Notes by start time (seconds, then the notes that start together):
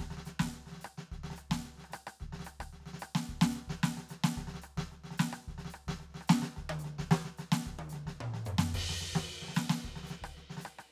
0.01 kick, snare
0.08 kick, snare
0.19 snare
0.27 snare, hi-hat pedal
0.41 kick, snare
0.46 snare
0.55 snare
0.61 snare
0.65 snare
0.67 snare
0.73 snare
0.78 snare
0.82 cross-stick, hi-hat pedal
0.99 snare
1.13 kick, snare
1.19 kick
1.25 snare
1.32 snare
1.37 cross-stick, hi-hat pedal
1.51 kick, snare
1.66 snare
1.75 snare
1.79 snare
1.85 cross-stick
1.91 cross-stick, snare, hi-hat pedal
2.08 cross-stick
2.21 kick, snare
2.29 kick
2.34 snare
2.41 snare
2.46 cross-stick, hi-hat pedal
2.61 kick, cross-stick
2.67 kick
2.74 snare
2.81 snare
2.87 snare
2.95 snare
3.01 cross-stick, hi-hat pedal
3.16 snare
3.30 kick, snare
3.43 snare
3.52 hi-hat pedal
3.57 snare
3.69 kick, snare
3.85 snare
3.99 snare
4.10 snare, hi-hat pedal
4.25 snare
4.39 kick, snare
4.44 kick
4.49 snare
4.55 snare
4.63 cross-stick, hi-hat pedal
4.79 kick, snare
4.93 snare
5.00 snare
5.05 snare
5.12 snare
5.19 snare, hi-hat pedal
5.34 cross-stick
5.49 kick, snare
5.59 snare
5.66 snare
5.71 cross-stick, hi-hat pedal
5.89 kick, snare
5.95 kick
6.01 snare
6.11 snare
6.16 snare
6.22 cross-stick
6.29 snare, hi-hat pedal
6.44 snare
6.58 kick, snare
6.65 kick
6.71 high tom
6.80 hi-hat pedal
6.86 snare
7.00 kick, snare
7.12 snare
7.26 snare
7.39 snare, hi-hat pedal
7.53 snare
7.67 kick, snare
7.73 kick
7.80 high tom
7.91 snare, hi-hat pedal
8.07 kick, snare
8.22 mid tom
8.35 snare
8.47 floor tom, hi-hat pedal
8.60 snare
8.75 kick, ride
8.91 snare
8.99 snare, hi-hat pedal
9.14 kick, snare
9.30 snare
9.36 snare
9.43 snare
9.50 snare
9.56 snare, hi-hat pedal
9.71 snare
9.86 kick, snare
9.92 kick
9.97 snare
10.05 snare, hi-hat pedal
10.11 snare
10.23 kick, cross-stick
10.29 kick
10.38 snare
10.44 snare
10.50 snare
10.58 snare
10.62 cross-stick, hi-hat pedal
10.80 cross-stick